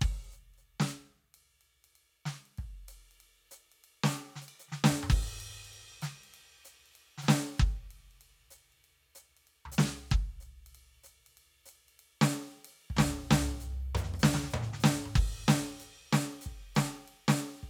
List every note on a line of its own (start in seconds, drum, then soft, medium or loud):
0.01 open hi-hat medium
0.01 kick loud
0.01 ride bell soft
0.32 hi-hat pedal soft
0.32 ride soft
0.54 hi-hat pedal soft
0.54 ride soft
0.80 snare loud
0.88 hi-hat pedal soft
1.34 ride soft
1.61 ride soft
1.84 ride soft
1.96 ride soft
2.26 snare medium
2.26 ride soft
2.46 ride soft
2.58 kick medium
2.58 ride soft
2.88 hi-hat pedal soft
2.88 ride medium
3.11 ride soft
3.21 ride soft
3.51 hi-hat pedal medium
3.51 ride soft
3.72 ride soft
3.84 ride soft
4.04 snare loud
4.09 hi-hat pedal medium
4.16 ride soft
4.36 snare medium
4.42 hi-hat pedal soft
4.48 ride bell medium
4.60 hi-hat pedal soft
4.68 snare soft
4.72 snare medium
4.84 snare loud
4.84 hi-hat pedal soft
4.90 mid tom medium
5.03 high tom medium
5.10 kick loud
5.10 crash medium
5.40 ride medium
5.65 ride soft
5.73 ride soft
6.02 snare medium
6.02 hi-hat pedal medium
6.02 ride soft
6.24 ride soft
6.34 ride soft
6.65 hi-hat pedal soft
6.65 ride soft
6.86 ride soft
6.93 hi-hat pedal soft
6.93 ride soft
7.18 snare medium
7.18 hi-hat pedal soft
7.24 snare medium
7.29 snare loud
7.59 kick loud
7.59 ride soft
7.66 hi-hat pedal soft
7.91 ride soft
8.11 ride soft
8.51 hi-hat pedal soft
8.51 ride soft
8.73 ride soft
8.84 ride soft
9.15 hi-hat pedal medium
9.15 ride soft
9.37 ride soft
9.47 ride soft
9.66 floor tom medium
9.72 hi-hat pedal medium
9.78 snare loud
10.11 kick loud
10.11 ride soft
10.40 hi-hat pedal soft
10.40 ride soft
10.66 ride soft
10.75 ride soft
11.04 hi-hat pedal soft
11.04 ride soft
11.27 ride soft
11.37 ride soft
11.66 hi-hat pedal soft
11.66 ride soft
11.89 ride soft
11.99 ride soft
12.21 snare loud
12.21 hi-hat pedal soft
12.34 ride medium
12.65 hi-hat pedal soft
12.65 ride medium
12.90 kick medium
12.97 snare loud
12.97 floor tom loud
13.31 snare loud
13.31 floor tom loud
13.60 hi-hat pedal medium
13.95 hi-hat pedal medium
13.95 mid tom loud
14.04 snare soft
14.14 cross-stick soft
14.19 snare loud
14.19 hi-hat pedal medium
14.34 snare medium
14.44 snare medium
14.51 hi-hat pedal soft
14.51 high tom loud
14.62 snare soft
14.73 snare medium
14.80 snare loud
14.80 hi-hat pedal medium
14.94 kick soft
14.94 mid tom medium
15.06 high tom medium
15.16 kick loud
15.16 crash medium
15.48 snare loud
15.48 ride medium
15.80 hi-hat pedal soft
15.80 ride soft
16.13 snare loud
16.13 hi-hat pedal medium
16.13 ride medium
16.33 ride soft
16.41 hi-hat pedal medium
16.46 kick medium
16.46 ride soft
16.75 snare loud
16.75 hi-hat pedal medium
16.75 ride medium
17.08 ride soft
17.28 snare loud
17.39 ride medium
17.63 kick medium